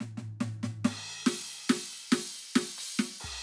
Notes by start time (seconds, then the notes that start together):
0.00 snare, floor tom
0.17 snare, floor tom
0.40 snare, floor tom
0.63 snare, floor tom
0.84 snare, ride
1.26 snare, crash
1.48 crash
1.69 snare, crash
1.90 crash
2.12 snare, crash
2.34 crash
2.55 snare, crash
2.77 crash
2.99 snare
3.20 kick, ride